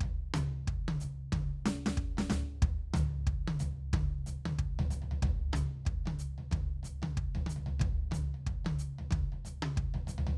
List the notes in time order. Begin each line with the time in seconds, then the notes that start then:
0.01 kick, floor tom
0.34 floor tom, hi-hat pedal, high tom
0.68 kick, floor tom
0.89 high tom
1.01 floor tom, hi-hat pedal
1.33 kick, floor tom, high tom
1.66 snare, floor tom, hi-hat pedal
1.86 snare, floor tom
1.98 kick
2.18 snare, floor tom
2.30 snare, floor tom, hi-hat pedal
2.62 kick, floor tom
2.94 floor tom, hi-hat pedal, high tom
3.27 kick, floor tom
3.48 high tom
3.60 floor tom, hi-hat pedal
3.93 kick, floor tom, high tom
4.27 floor tom, hi-hat pedal
4.46 floor tom, high tom
4.59 kick
4.79 floor tom
4.91 floor tom, hi-hat pedal
5.02 floor tom
5.12 floor tom
5.23 kick, floor tom
5.53 floor tom, hi-hat pedal, high tom
5.86 kick, floor tom
6.06 floor tom, high tom
6.19 hi-hat pedal
6.38 floor tom
6.52 kick, floor tom, high tom
6.83 floor tom, hi-hat pedal
7.02 floor tom, high tom
7.17 kick
7.35 floor tom
7.47 hi-hat pedal, high tom
7.57 floor tom
7.80 kick, floor tom
8.12 floor tom, hi-hat pedal, high tom
8.35 floor tom
8.47 kick, floor tom
8.65 floor tom, high tom
8.79 hi-hat pedal
8.99 floor tom
9.11 kick, floor tom, high tom
9.32 floor tom
9.45 floor tom, hi-hat pedal
9.63 high tom
9.77 kick, floor tom
9.94 floor tom
10.08 floor tom, hi-hat pedal
10.19 floor tom
10.27 floor tom